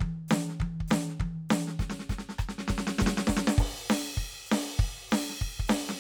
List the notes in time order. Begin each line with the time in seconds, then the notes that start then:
0.01 kick, high tom
0.29 snare, hi-hat pedal, high tom
0.50 snare
0.60 kick, high tom
0.81 kick
0.88 snare, hi-hat pedal, high tom
1.09 snare
1.20 kick, high tom
1.50 snare, hi-hat pedal, high tom
1.68 snare
1.80 kick, snare, hi-hat pedal
1.90 snare
2.00 snare
2.10 kick, snare, hi-hat pedal
2.19 snare
2.29 snare
2.39 kick, cross-stick, hi-hat pedal
2.49 snare
2.59 snare
2.68 kick, snare, hi-hat pedal
2.78 snare
2.88 snare
2.99 kick, snare, hi-hat pedal
3.07 snare
3.18 snare
3.28 kick, snare, hi-hat pedal
3.37 snare
3.48 snare
3.58 kick, crash
3.90 snare, hi-hat pedal, crash
4.18 kick
4.46 hi-hat pedal
4.52 snare, crash
4.79 kick
5.09 snare, hi-hat pedal, crash
5.30 snare
5.42 kick
5.60 kick
5.68 snare, hi-hat pedal, crash
5.90 snare